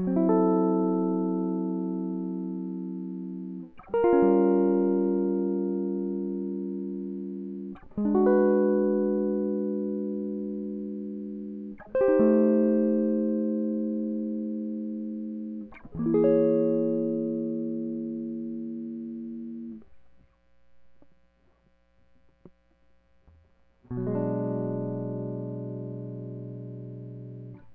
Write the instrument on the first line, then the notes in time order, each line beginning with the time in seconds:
electric guitar
0.00 F#3
0.08 C4
0.17 E4
0.29 A4
3.94 A#4
4.04 F4
4.13 C#4
4.23 G3
7.98 G#3
8.05 D4
8.15 F#4
8.26 B4
11.95 C5
12.01 G4
12.09 D#4
12.20 A3
16.00 A#3
16.06 E4
16.14 G#4
16.24 C#5
23.92 B2
23.98 F#3
24.07 G#3
24.15 D4